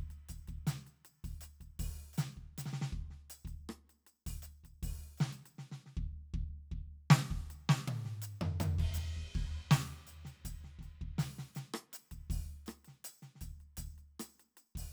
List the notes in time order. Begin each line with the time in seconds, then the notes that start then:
0.11 snare, percussion
0.30 kick, percussion
0.48 kick, percussion
0.68 snare, percussion
0.88 percussion
1.06 percussion
1.25 kick, percussion
1.42 percussion
1.45 percussion
1.61 kick, percussion
1.80 kick, percussion
2.14 percussion
2.19 snare, percussion
2.38 kick
2.59 snare, percussion
2.67 snare
2.74 snare
2.82 snare
2.93 kick
3.11 snare
3.31 percussion
3.46 kick, percussion
3.70 cross-stick
3.90 percussion
4.08 percussion
4.27 kick, percussion
4.43 percussion
4.65 kick, percussion
4.84 kick, percussion
5.19 snare, percussion
5.33 percussion
5.47 percussion
5.59 snare
5.73 snare
5.87 snare
5.98 kick
6.35 kick
6.72 kick
7.11 snare
7.18 snare
7.31 kick
7.51 percussion
7.70 snare
7.88 high tom
8.06 snare
8.23 percussion
8.42 mid tom
8.61 mid tom, percussion
8.79 kick, ride
8.95 snare, percussion
9.18 kick
9.35 kick, crash
9.72 snare, percussion
10.08 percussion
10.12 percussion
10.26 snare, percussion
10.46 kick, percussion
10.65 snare
10.80 kick, snare
10.84 percussion
11.02 kick
11.19 snare, percussion
11.39 snare
11.56 snare, percussion
11.75 cross-stick
11.94 percussion
12.12 kick, percussion
12.31 kick, percussion
12.67 cross-stick, percussion
12.70 percussion
12.85 snare, percussion
13.05 percussion
13.23 snare, percussion
13.36 snare
13.42 kick, percussion
13.61 percussion
13.78 kick, percussion
13.99 percussion
14.20 cross-stick, percussion
14.40 percussion
14.58 percussion
14.76 kick, percussion